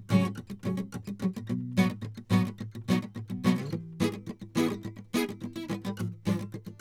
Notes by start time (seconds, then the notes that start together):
0.11 F#2 C#3 F#3 C#4
0.24 C#4
0.67 C3 F#3 C#4
0.79 C#4
1.22 C3 F#3
1.51 B2 F#3
1.79 F#3 B3
2.32 B2 F#3 B3
2.90 A#2 F#3 B3
3.31 F#3
3.46 B2 B3
3.74 E3
4.01 E3 B3 E4 G#4
4.57 E3 B3 E4 G#4
5.15 B3 E4 G#4
5.57 E4
5.71 E3
5.98 A#2 F3
6.27 F3 G#3 D4